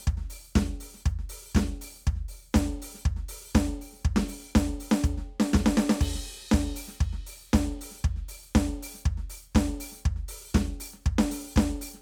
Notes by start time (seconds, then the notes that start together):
0.01 snare, hi-hat pedal
0.07 closed hi-hat, kick
0.17 snare
0.23 snare
0.30 open hi-hat
0.52 kick, snare, hi-hat pedal
0.56 closed hi-hat
0.71 snare
0.81 open hi-hat
0.94 snare
1.00 hi-hat pedal
1.06 closed hi-hat, kick
1.19 snare
1.30 open hi-hat
1.52 kick, hi-hat pedal
1.57 closed hi-hat, snare
1.82 open hi-hat
2.04 closed hi-hat, kick, hi-hat pedal
2.16 snare
2.20 snare
2.29 open hi-hat
2.53 closed hi-hat, kick, snare, hi-hat pedal
2.62 snare
2.82 open hi-hat
2.95 snare
3.01 hi-hat pedal
3.06 kick, closed hi-hat
3.17 snare
3.29 open hi-hat
3.52 kick, snare, closed hi-hat, hi-hat pedal
3.82 open hi-hat
3.93 snare
4.00 hi-hat pedal
4.05 kick, closed hi-hat
4.16 snare
4.29 open hi-hat
4.50 hi-hat pedal
4.56 closed hi-hat, kick, snare
4.80 open hi-hat
4.92 snare
4.98 snare, hi-hat pedal
5.04 kick, closed hi-hat
5.18 snare
5.40 snare
5.52 kick, snare, hi-hat pedal
5.66 snare
5.78 snare
5.90 snare
5.99 kick, hi-hat pedal, crash
6.15 snare
6.52 kick, snare
6.59 snare
6.76 open hi-hat
6.88 snare
6.97 hi-hat pedal
7.01 kick, closed hi-hat
7.13 snare
7.27 open hi-hat
7.49 hi-hat pedal
7.54 kick, snare, closed hi-hat
7.62 snare
7.81 open hi-hat
7.92 snare
7.99 hi-hat pedal
8.04 kick, closed hi-hat
8.17 snare
8.29 open hi-hat
8.51 hi-hat pedal
8.55 kick, snare, closed hi-hat
8.83 open hi-hat
8.95 snare
9.01 hi-hat pedal
9.06 kick, closed hi-hat
9.18 snare
9.30 open hi-hat
9.51 kick, hi-hat pedal
9.56 snare, closed hi-hat
9.72 snare
9.80 open hi-hat
9.92 snare
9.96 snare
10.01 hi-hat pedal
10.06 kick, closed hi-hat
10.17 snare
10.29 open hi-hat
10.52 kick, snare, closed hi-hat, hi-hat pedal
10.71 snare
10.75 snare
10.80 open hi-hat
10.94 snare
11.02 hi-hat pedal
11.06 kick, closed hi-hat
11.19 snare
11.31 open hi-hat
11.55 kick, snare, hi-hat pedal
11.59 closed hi-hat
11.82 open hi-hat
11.94 snare